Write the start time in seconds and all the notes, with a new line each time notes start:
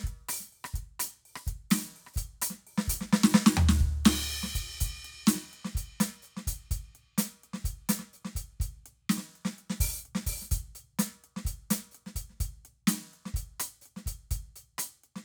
0.01 kick, hi-hat pedal
0.08 closed hi-hat
0.29 open hi-hat, cross-stick
0.41 snare
0.53 open hi-hat
0.65 cross-stick, hi-hat pedal
0.75 kick, closed hi-hat
1.00 closed hi-hat, cross-stick
1.26 open hi-hat
1.36 cross-stick
1.46 kick, closed hi-hat, hi-hat pedal
1.71 open hi-hat, snare
1.97 open hi-hat
2.07 cross-stick
2.14 closed hi-hat, kick, hi-hat pedal
2.42 open hi-hat, cross-stick
2.51 snare
2.67 open hi-hat
2.78 snare
2.86 closed hi-hat, kick, hi-hat pedal
3.02 snare
3.13 snare
3.24 snare
3.30 hi-hat pedal
3.35 snare
3.47 snare
3.58 floor tom
3.69 snare
3.79 kick, hi-hat pedal
3.88 kick
3.91 kick
4.06 snare, crash
4.30 closed hi-hat
4.44 snare
4.56 closed hi-hat, kick
4.81 closed hi-hat, kick
4.88 kick, snare
4.93 snare
5.05 closed hi-hat
5.27 closed hi-hat, snare, hi-hat pedal
5.36 snare
5.48 hi-hat pedal
5.54 closed hi-hat
5.65 snare
5.76 closed hi-hat, kick
5.83 kick
6.01 closed hi-hat, snare
6.23 closed hi-hat, hi-hat pedal
6.37 snare
6.48 closed hi-hat, kick
6.72 closed hi-hat, kick
6.77 kick
6.96 closed hi-hat
7.19 closed hi-hat, snare
7.44 closed hi-hat
7.54 snare
7.65 closed hi-hat, kick
7.90 closed hi-hat, snare
8.00 snare
8.14 hi-hat pedal
8.25 snare
8.36 closed hi-hat, kick
8.61 closed hi-hat, kick
8.87 closed hi-hat
9.10 closed hi-hat, snare
9.18 snare
9.36 closed hi-hat
9.46 snare
9.59 closed hi-hat
9.70 snare
9.81 open hi-hat, kick, snare
9.88 kick
9.93 kick
9.99 hi-hat pedal
10.06 closed hi-hat
10.16 snare
10.27 open hi-hat, kick
10.42 snare, hi-hat pedal
10.52 closed hi-hat, kick
10.59 kick
10.76 closed hi-hat
11.00 closed hi-hat, snare
11.25 closed hi-hat
11.37 snare
11.46 closed hi-hat, kick
11.71 closed hi-hat, snare
11.92 closed hi-hat, hi-hat pedal
12.07 snare
12.16 closed hi-hat, kick
12.30 snare
12.36 snare
12.39 closed hi-hat, kick, snare
12.66 closed hi-hat
12.88 closed hi-hat, snare
13.14 closed hi-hat
13.26 snare
13.35 closed hi-hat, kick
13.60 closed hi-hat, cross-stick
13.82 hi-hat pedal
13.86 closed hi-hat
13.97 snare
14.07 closed hi-hat, kick
14.32 closed hi-hat, kick
14.38 kick
14.56 closed hi-hat
14.79 closed hi-hat, cross-stick
15.04 closed hi-hat
15.16 snare